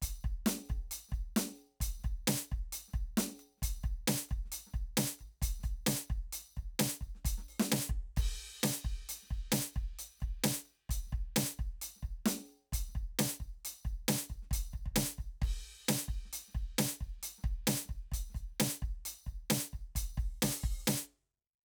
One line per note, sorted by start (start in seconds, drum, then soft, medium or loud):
0.02 closed hi-hat loud
0.02 kick soft
0.25 kick soft
0.46 closed hi-hat loud
0.46 snare loud
0.69 kick soft
0.69 closed hi-hat soft
0.91 closed hi-hat loud
1.09 kick soft
1.09 snare soft
1.14 closed hi-hat soft
1.37 closed hi-hat loud
1.37 snare loud
1.59 closed hi-hat soft
1.81 closed hi-hat loud
1.81 kick soft
2.00 snare soft
2.04 kick soft
2.04 closed hi-hat soft
2.28 closed hi-hat loud
2.28 snare loud
2.52 kick soft
2.52 closed hi-hat soft
2.73 closed hi-hat loud
2.88 snare soft
2.94 kick soft
2.94 closed hi-hat soft
3.18 closed hi-hat loud
3.18 snare loud
3.40 closed hi-hat soft
3.58 snare soft
3.63 closed hi-hat loud
3.63 kick soft
3.77 snare soft
3.84 kick soft
3.84 closed hi-hat soft
4.08 closed hi-hat loud
4.08 snare loud
4.29 kick soft
4.29 closed hi-hat soft
4.46 snare soft
4.52 closed hi-hat loud
4.67 snare soft
4.74 kick soft
4.74 closed hi-hat soft
4.98 closed hi-hat loud
4.98 snare loud
5.19 kick soft
5.19 closed hi-hat soft
5.42 closed hi-hat loud
5.42 kick medium
5.60 closed hi-hat soft
5.60 snare soft
5.64 kick soft
5.87 closed hi-hat loud
5.87 snare loud
6.10 kick soft
6.10 closed hi-hat soft
6.33 closed hi-hat loud
6.57 kick soft
6.57 closed hi-hat soft
6.80 closed hi-hat loud
6.80 snare loud
7.01 kick soft
7.01 closed hi-hat soft
7.15 snare soft
7.25 kick medium
7.25 percussion loud
7.38 snare soft
7.49 percussion soft
7.60 snare loud
7.68 hi-hat pedal soft
7.72 snare loud
7.90 kick soft
8.17 kick medium
8.17 hi-hat pedal medium
8.17 crash medium
8.64 closed hi-hat loud
8.64 snare loud
8.85 kick soft
9.09 closed hi-hat loud
9.23 snare soft
9.31 kick soft
9.31 closed hi-hat soft
9.52 closed hi-hat loud
9.52 snare loud
9.74 closed hi-hat soft
9.74 kick soft
9.99 closed hi-hat loud
10.19 kick soft
10.19 snare soft
10.19 closed hi-hat soft
10.44 closed hi-hat loud
10.44 snare loud
10.66 closed hi-hat soft
10.90 closed hi-hat loud
10.90 kick soft
11.07 snare soft
11.12 kick soft
11.12 closed hi-hat soft
11.36 closed hi-hat loud
11.36 snare loud
11.59 kick soft
11.82 closed hi-hat loud
11.96 snare soft
12.03 kick soft
12.03 closed hi-hat soft
12.26 closed hi-hat loud
12.26 snare loud
12.50 closed hi-hat soft
12.73 closed hi-hat loud
12.73 kick soft
12.89 snare soft
12.95 kick soft
12.95 closed hi-hat soft
13.19 closed hi-hat loud
13.19 snare loud
13.27 snare soft
13.40 kick soft
13.40 closed hi-hat soft
13.65 closed hi-hat loud
13.85 kick soft
13.85 closed hi-hat soft
14.09 closed hi-hat loud
14.09 snare loud
14.14 snare medium
14.29 closed hi-hat soft
14.29 kick soft
14.43 snare soft
14.51 closed hi-hat loud
14.51 kick medium
14.73 kick soft
14.73 closed hi-hat soft
14.86 kick soft
14.96 closed hi-hat loud
14.96 snare loud
15.19 kick soft
15.19 closed hi-hat soft
15.42 kick medium
15.42 crash medium
15.61 closed hi-hat soft
15.89 closed hi-hat loud
15.89 snare loud
16.09 kick soft
16.09 closed hi-hat soft
16.26 snare soft
16.33 closed hi-hat loud
16.48 snare soft
16.55 kick soft
16.55 closed hi-hat soft
16.79 closed hi-hat loud
16.79 snare loud
17.01 kick soft
17.20 closed hi-hat loud
17.20 snare soft
17.39 snare soft
17.43 kick medium
17.43 closed hi-hat soft
17.68 closed hi-hat loud
17.68 snare loud
17.85 snare soft
17.89 kick soft
18.12 closed hi-hat loud
18.12 kick soft
18.30 snare soft
18.35 closed hi-hat soft
18.35 kick soft
18.60 closed hi-hat loud
18.60 snare loud
18.82 kick soft
18.82 closed hi-hat soft
19.06 closed hi-hat loud
19.27 kick soft
19.27 closed hi-hat soft
19.50 closed hi-hat loud
19.50 snare loud
19.73 kick soft
19.96 closed hi-hat loud
19.96 kick soft
20.18 kick medium
20.18 percussion soft
20.43 kick soft
20.43 snare loud
20.43 percussion loud
20.64 kick medium
20.64 percussion soft
20.88 snare loud
20.88 hi-hat pedal medium
20.88 percussion loud